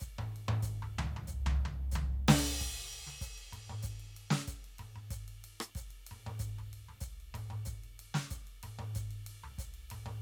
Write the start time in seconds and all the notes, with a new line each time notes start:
0.01 kick, hi-hat pedal, ride
0.19 high tom
0.37 ride
0.49 high tom
0.63 kick, hi-hat pedal, ride
0.83 floor tom
0.99 floor tom
1.17 floor tom
1.28 kick, hi-hat pedal
1.47 floor tom
1.66 floor tom
1.92 kick, floor tom, hi-hat pedal
2.29 snare, crash
2.61 kick, hi-hat pedal, ride
2.79 ride
2.94 ride
3.08 snare
3.22 kick, hi-hat pedal, ride
3.39 ride
3.45 hi-hat pedal
3.53 high tom, ride
3.70 high tom
3.84 kick, hi-hat pedal, ride
4.01 ride
4.17 ride
4.31 snare
4.48 kick, hi-hat pedal, ride
4.65 ride
4.79 high tom, ride
4.97 high tom
5.11 kick, hi-hat pedal, ride
5.29 ride
5.45 ride
5.61 cross-stick
5.76 kick, hi-hat pedal, ride
5.91 ride
6.08 ride
6.12 high tom
6.27 high tom
6.40 kick, hi-hat pedal
6.44 ride
6.59 floor tom, ride
6.74 ride
6.89 floor tom
7.01 kick, hi-hat pedal, ride
7.21 ride
7.35 high tom, ride
7.51 high tom
7.66 kick, hi-hat pedal, ride
7.85 ride
8.00 ride
8.15 snare
8.31 kick, hi-hat pedal, ride
8.48 ride
8.64 high tom, ride
8.80 high tom
8.96 kick, hi-hat pedal, ride
9.12 ride
9.27 ride
9.44 floor tom
9.59 kick, hi-hat pedal, ride
9.75 ride
9.91 high tom, ride
10.07 high tom